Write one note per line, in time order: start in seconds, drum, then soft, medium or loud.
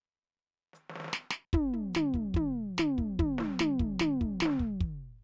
0.73 snare soft
0.73 hi-hat pedal medium
0.90 snare soft
0.96 snare soft
1.00 snare soft
1.05 snare soft
1.08 snare soft
1.13 snare loud
1.31 snare loud
1.53 kick medium
1.53 floor tom loud
1.73 kick soft
1.73 floor tom medium
1.93 snare loud
1.93 floor tom loud
1.93 hi-hat pedal medium
2.14 kick soft
2.14 floor tom soft
2.34 kick medium
2.34 floor tom loud
2.77 snare loud
2.77 floor tom loud
2.77 hi-hat pedal medium
2.97 kick soft
2.97 floor tom soft
3.18 kick medium
3.18 floor tom loud
3.18 hi-hat pedal soft
3.38 snare medium
3.38 floor tom medium
3.59 snare loud
3.59 floor tom loud
3.80 kick medium
3.80 floor tom medium
4.00 snare loud
4.00 floor tom loud
4.20 kick soft
4.20 floor tom soft
4.40 snare loud
4.40 floor tom loud
4.46 snare medium
4.60 kick soft
4.81 kick medium